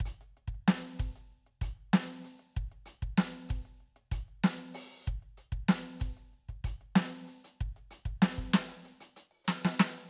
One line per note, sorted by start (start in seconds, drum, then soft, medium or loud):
0.04 closed hi-hat loud
0.04 kick medium
0.21 closed hi-hat medium
0.37 closed hi-hat soft
0.48 kick soft
0.54 closed hi-hat soft
0.68 snare loud
0.83 closed hi-hat soft
0.99 closed hi-hat medium
0.99 kick medium
1.16 closed hi-hat medium
1.32 closed hi-hat soft
1.46 closed hi-hat soft
1.61 closed hi-hat loud
1.61 kick medium
1.77 closed hi-hat soft
1.93 snare loud
2.09 closed hi-hat medium
2.24 closed hi-hat medium
2.39 closed hi-hat soft
2.55 kick medium
2.55 closed hi-hat soft
2.72 closed hi-hat soft
2.86 closed hi-hat loud
3.02 kick soft
3.02 closed hi-hat soft
3.18 snare loud
3.32 closed hi-hat soft
3.49 closed hi-hat medium
3.49 kick medium
3.65 closed hi-hat soft
3.80 closed hi-hat soft
3.96 closed hi-hat soft
4.11 closed hi-hat loud
4.11 kick medium
4.28 closed hi-hat soft
4.44 snare loud
4.59 closed hi-hat medium
4.74 open hi-hat loud
5.06 open hi-hat soft
5.06 kick medium
5.06 hi-hat pedal medium
5.22 closed hi-hat soft
5.37 closed hi-hat medium
5.52 kick soft
5.52 closed hi-hat soft
5.68 snare loud
5.84 closed hi-hat soft
6.00 closed hi-hat loud
6.00 kick medium
6.17 closed hi-hat soft
6.33 closed hi-hat soft
6.49 kick soft
6.49 closed hi-hat soft
6.64 closed hi-hat loud
6.64 kick soft
6.81 closed hi-hat soft
6.95 snare loud
7.00 snare medium
7.12 closed hi-hat soft
7.28 closed hi-hat medium
7.44 closed hi-hat loud
7.61 kick soft
7.61 closed hi-hat soft
7.76 closed hi-hat medium
7.91 closed hi-hat loud
8.05 kick soft
8.05 closed hi-hat medium
8.22 snare loud
8.37 kick soft
8.37 closed hi-hat soft
8.53 snare loud
8.69 closed hi-hat medium
8.85 closed hi-hat medium
9.00 closed hi-hat loud
9.16 closed hi-hat loud
9.31 open hi-hat soft
9.44 snare loud
9.44 hi-hat pedal medium
9.65 snare loud
9.79 snare loud